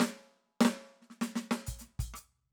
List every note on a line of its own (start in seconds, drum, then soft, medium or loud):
0.00 snare loud
0.61 snare loud
0.65 snare loud
1.02 snare soft
1.10 snare soft
1.21 snare medium
1.21 hi-hat pedal medium
1.36 snare medium
1.51 snare medium
1.56 cross-stick soft
1.67 closed hi-hat medium
1.67 kick soft
1.79 snare soft
1.79 hi-hat pedal medium
1.99 closed hi-hat medium
1.99 kick medium
2.14 cross-stick medium
2.14 hi-hat pedal medium